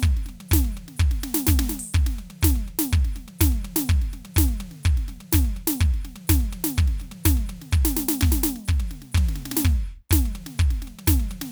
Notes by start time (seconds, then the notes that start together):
0.01 kick, hi-hat pedal
0.05 high tom
0.17 snare
0.23 snare, hi-hat pedal
0.29 high tom
0.41 high tom
0.49 kick, hi-hat pedal
0.54 snare
0.65 high tom
0.72 hi-hat pedal
0.77 high tom
0.88 snare
0.97 kick, hi-hat pedal
1.01 high tom
1.11 snare
1.21 snare, hi-hat pedal
1.35 snare
1.45 kick, snare, hi-hat pedal
1.59 snare
1.70 snare
1.80 open hi-hat
1.92 kick, snare, hi-hat pedal
2.07 snare
2.15 hi-hat pedal, high tom
2.30 high tom
2.42 kick, snare, hi-hat pedal
2.56 high tom
2.64 hi-hat pedal, high tom
2.79 snare
2.90 kick, hi-hat pedal, high tom
3.05 snare
3.13 snare, hi-hat pedal
3.17 high tom
3.28 high tom
3.39 kick, snare, hi-hat pedal
3.52 high tom
3.62 hi-hat pedal, high tom
3.76 snare
3.87 kick, hi-hat pedal, high tom
4.02 snare
4.10 snare, hi-hat pedal
4.14 high tom
4.25 high tom
4.35 kick, snare, hi-hat pedal
4.49 high tom
4.57 hi-hat pedal, high tom
4.71 snare
4.84 kick, hi-hat pedal, high tom
4.98 snare
5.07 snare, hi-hat pedal, high tom
5.21 high tom
5.32 kick, snare, hi-hat pedal
5.45 high tom
5.54 hi-hat pedal, high tom
5.68 snare
5.79 kick, hi-hat pedal
5.83 high tom
5.94 snare
6.01 hi-hat pedal
6.05 snare, high tom
6.16 high tom
6.28 kick, snare, hi-hat pedal
6.41 high tom
6.51 hi-hat pedal, high tom
6.64 snare
6.76 kick, hi-hat pedal, high tom
6.88 snare
6.98 snare, hi-hat pedal, high tom
7.12 high tom
7.24 kick, snare, hi-hat pedal
7.37 high tom
7.46 hi-hat pedal, high tom
7.62 snare
7.72 kick, hi-hat pedal, high tom
7.85 snare
7.95 snare, hi-hat pedal
8.09 snare
8.19 snare, hi-hat pedal
8.23 kick
8.32 snare
8.42 snare, hi-hat pedal
8.56 snare
8.65 kick, snare, hi-hat pedal
8.80 high tom
8.88 snare, hi-hat pedal
9.02 snare
9.12 kick, hi-hat pedal
9.18 high tom
9.29 snare
9.36 snare
9.46 snare
9.52 snare
9.57 snare
9.61 kick, hi-hat pedal
9.83 hi-hat pedal
10.10 kick, snare, hi-hat pedal
10.26 high tom
10.32 hi-hat pedal, high tom
10.47 snare
10.58 kick, hi-hat pedal, high tom
10.71 snare
10.80 snare, hi-hat pedal
10.88 high tom
10.99 high tom
11.07 kick, snare, hi-hat pedal
11.20 high tom
11.29 hi-hat pedal, high tom
11.42 snare